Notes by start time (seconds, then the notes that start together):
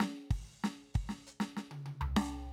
0.00 snare
0.31 open hi-hat, kick
0.64 snare
0.94 open hi-hat, kick
1.09 snare
1.27 hi-hat pedal
1.40 snare
1.57 snare
1.71 high tom
1.86 high tom
2.01 floor tom
2.16 snare